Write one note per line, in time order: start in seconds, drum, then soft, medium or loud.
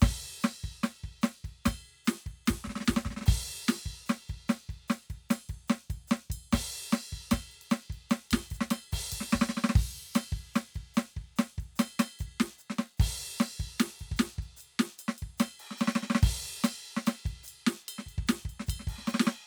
0.01 kick loud
0.01 snare loud
0.01 hi-hat pedal medium
0.01 crash loud
0.42 snare loud
0.42 hi-hat pedal medium
0.42 ride bell medium
0.64 kick medium
0.64 ride soft
0.84 snare loud
0.84 hi-hat pedal medium
0.84 ride bell medium
1.04 kick soft
1.04 ride soft
1.22 snare loud
1.22 hi-hat pedal medium
1.22 ride bell medium
1.45 kick soft
1.45 ride soft
1.66 kick medium
1.66 snare loud
1.66 hi-hat pedal medium
1.66 ride bell loud
1.86 ride soft
2.06 snare loud
2.06 hi-hat pedal medium
2.06 ride bell medium
2.27 kick soft
2.27 ride soft
2.46 snare loud
2.46 hi-hat pedal medium
2.46 ride loud
2.51 kick medium
2.65 kick soft
2.65 snare medium
2.70 snare medium
2.76 snare medium
2.81 snare medium
2.86 kick medium
2.86 snare loud
2.86 hi-hat pedal medium
2.97 snare loud
3.06 kick medium
3.06 snare medium
3.11 snare medium
3.17 snare medium
3.22 snare medium
3.27 kick loud
3.27 hi-hat pedal medium
3.27 crash loud
3.68 snare loud
3.68 hi-hat pedal medium
3.68 ride bell medium
3.86 kick medium
4.07 snare loud
4.07 hi-hat pedal medium
4.07 ride bell soft
4.30 kick medium
4.30 ride bell soft
4.49 snare loud
4.49 hi-hat pedal medium
4.49 ride bell soft
4.70 kick soft
4.70 ride soft
4.89 snare loud
4.89 hi-hat pedal medium
4.89 ride bell medium
5.11 kick soft
5.11 ride bell soft
5.30 snare loud
5.30 hi-hat pedal medium
5.30 ride bell medium
5.50 kick soft
5.50 ride soft
5.68 snare loud
5.68 hi-hat pedal medium
5.91 kick medium
5.91 ride bell soft
6.02 kick soft
6.08 snare loud
6.08 hi-hat pedal medium
6.31 kick medium
6.31 ride bell medium
6.53 kick medium
6.53 snare loud
6.53 hi-hat pedal medium
6.53 crash loud
6.92 snare loud
6.92 hi-hat pedal medium
6.92 ride bell medium
7.13 kick soft
7.32 kick medium
7.32 snare loud
7.32 hi-hat pedal medium
7.32 ride bell loud
7.52 ride bell soft
7.62 ride medium
7.71 snare loud
7.71 hi-hat pedal medium
7.71 ride soft
7.91 kick soft
7.91 ride soft
8.11 snare loud
8.11 hi-hat pedal medium
8.11 ride medium
8.32 kick medium
8.32 snare loud
8.32 ride bell loud
8.51 kick soft
8.51 hi-hat pedal medium
8.51 ride bell soft
8.62 snare loud
8.71 snare loud
8.71 ride bell loud
8.92 kick medium
8.92 hi-hat pedal soft
8.92 crash loud
9.13 kick soft
9.13 ride loud
9.21 snare medium
9.31 snare loud
9.31 hi-hat pedal medium
9.35 kick soft
9.42 snare loud
9.50 snare medium
9.58 snare medium
9.65 snare loud
9.70 snare loud
9.76 kick loud
9.76 crash loud
10.15 snare loud
10.15 hi-hat pedal medium
10.15 ride bell loud
10.33 kick medium
10.55 snare loud
10.55 hi-hat pedal medium
10.55 ride bell medium
10.76 kick soft
10.76 ride bell soft
10.95 snare loud
10.95 hi-hat pedal medium
10.95 ride bell medium
11.17 kick soft
11.37 snare loud
11.37 hi-hat pedal medium
11.37 ride bell medium
11.59 kick medium
11.59 ride soft
11.77 snare loud
11.77 hi-hat pedal medium
11.77 ride bell loud
12.00 snare loud
12.00 ride bell loud
12.20 kick medium
12.20 hi-hat pedal medium
12.20 ride bell soft
12.41 kick soft
12.41 snare loud
12.59 hi-hat pedal medium
12.59 ride bell soft
12.71 snare medium
12.79 snare loud
12.79 ride soft
12.98 kick loud
12.98 hi-hat pedal medium
12.98 crash loud
13.39 snare loud
13.39 hi-hat pedal medium
13.39 ride bell medium
13.60 kick medium
13.60 ride bell soft
13.80 snare loud
13.80 hi-hat pedal medium
13.80 ride loud
14.00 kick soft
14.00 ride bell soft
14.12 kick medium
14.17 snare loud
14.17 hi-hat pedal medium
14.17 ride bell medium
14.39 kick medium
14.43 ride bell soft
14.57 hi-hat pedal loud
14.61 ride bell medium
14.80 snare loud
14.99 hi-hat pedal medium
14.99 ride bell medium
15.09 snare medium
15.19 kick soft
15.19 ride bell medium
15.39 snare loud
15.39 hi-hat pedal medium
15.39 ride bell loud
15.60 ride medium
15.72 snare medium
15.78 snare loud
15.78 hi-hat pedal medium
15.88 snare loud
15.96 snare loud
16.03 snare medium
16.11 snare loud
16.16 snare loud
16.23 kick loud
16.23 crash loud
16.64 snare loud
16.64 hi-hat pedal loud
16.64 ride bell loud
16.84 ride soft
16.97 snare medium
17.06 snare loud
17.06 hi-hat pedal medium
17.06 ride bell loud
17.26 kick medium
17.26 ride soft
17.44 hi-hat pedal loud
17.49 ride bell medium
17.67 snare loud
17.89 hi-hat pedal medium
17.89 ride bell loud
17.99 snare medium
18.07 kick soft
18.07 ride bell soft
18.19 kick medium
18.28 snare loud
18.28 hi-hat pedal loud
18.28 ride bell medium
18.46 kick medium
18.50 ride bell soft
18.60 snare medium
18.67 kick medium
18.67 hi-hat pedal medium
18.67 ride bell loud
18.80 snare soft
18.88 kick medium
18.88 ride medium
18.99 snare soft
19.08 snare medium
19.08 hi-hat pedal medium
19.15 snare medium
19.20 snare loud
19.28 snare loud